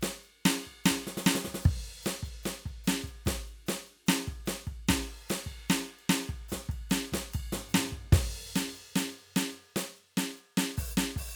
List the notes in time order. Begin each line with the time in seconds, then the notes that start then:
0.01 snare, hi-hat pedal, ride bell
0.23 ride
0.45 snare, hi-hat pedal, ride bell
0.65 kick, ride bell
0.84 snare, hi-hat pedal, ride bell
0.90 kick
1.07 snare
1.17 snare
1.24 snare, hi-hat pedal
1.35 snare
1.44 kick, snare
1.54 snare
1.62 kick, hi-hat pedal, crash
2.03 snare, hi-hat pedal, ride bell
2.23 kick, ride
2.43 snare, hi-hat pedal, ride bell
2.65 kick, ride
2.84 snare, hi-hat pedal
2.88 ride bell
3.04 kick, ride
3.25 kick, snare, hi-hat pedal, ride
3.47 ride
3.66 snare, hi-hat pedal, ride
3.86 ride
4.06 snare, hi-hat pedal
4.27 kick, ride bell
4.46 snare, hi-hat pedal
4.67 kick, ride bell
4.88 kick, snare, hi-hat pedal, crash
5.29 snare, hi-hat pedal, ride bell
5.46 kick, ride bell
5.69 snare, hi-hat pedal, ride bell
5.89 ride bell
5.99 ride bell
6.09 snare, hi-hat pedal, ride bell
6.29 kick, ride bell
6.48 kick, snare, hi-hat pedal, ride bell
6.69 kick, ride bell
6.89 snare, hi-hat pedal, ride bell
7.12 kick, snare, ride bell
7.32 kick, hi-hat pedal, ride bell
7.52 snare, floor tom
7.69 hi-hat pedal
7.74 snare, floor tom
7.92 kick
8.12 kick, snare, crash
8.18 hi-hat pedal
8.55 closed hi-hat, snare
8.74 closed hi-hat
8.96 closed hi-hat, snare
9.15 closed hi-hat
9.36 closed hi-hat, snare
9.55 closed hi-hat
9.76 closed hi-hat, snare
9.96 closed hi-hat
10.17 closed hi-hat, snare
10.36 closed hi-hat
10.57 snare
10.76 open hi-hat, kick
10.92 hi-hat pedal
10.97 snare
11.16 open hi-hat, kick